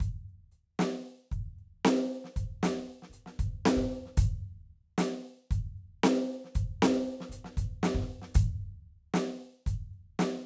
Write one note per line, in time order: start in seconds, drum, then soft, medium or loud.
0.02 closed hi-hat soft
0.02 kick medium
0.29 closed hi-hat soft
0.52 closed hi-hat soft
0.79 closed hi-hat medium
0.79 snare loud
1.06 closed hi-hat soft
1.31 kick medium
1.31 closed hi-hat soft
1.58 closed hi-hat soft
1.85 closed hi-hat medium
1.85 snare loud
2.24 snare soft
2.36 closed hi-hat medium
2.36 kick medium
2.63 closed hi-hat loud
2.63 snare loud
3.02 snare soft
3.09 closed hi-hat soft
3.09 kick soft
3.26 snare soft
3.39 closed hi-hat medium
3.39 kick medium
3.65 closed hi-hat medium
3.65 snare loud
3.77 kick medium
3.89 snare soft
4.05 snare soft
4.17 closed hi-hat loud
4.17 kick loud
4.42 closed hi-hat soft
4.98 closed hi-hat loud
4.98 snare loud
5.51 closed hi-hat medium
5.51 kick medium
5.77 closed hi-hat soft
6.03 snare loud
6.03 closed hi-hat medium
6.44 snare soft
6.55 closed hi-hat medium
6.55 kick medium
6.82 closed hi-hat medium
6.82 snare loud
7.07 closed hi-hat soft
7.20 snare medium
7.29 closed hi-hat medium
7.29 kick soft
7.44 snare soft
7.57 closed hi-hat medium
7.57 kick medium
7.83 closed hi-hat medium
7.83 snare loud
7.94 kick medium
8.00 snare soft
8.07 closed hi-hat soft
8.22 snare soft
8.34 closed hi-hat loud
8.34 kick loud
8.61 closed hi-hat soft
9.14 closed hi-hat loud
9.14 snare loud
9.66 closed hi-hat medium
9.66 kick medium
9.93 closed hi-hat soft
10.19 closed hi-hat medium
10.19 snare loud
10.36 snare soft